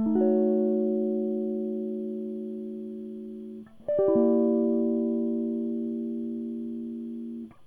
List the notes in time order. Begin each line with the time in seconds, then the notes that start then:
0.00 A3
0.07 D#4
0.16 F#4
0.22 C#5
3.89 D5
3.99 G4
4.09 E4
4.17 A#3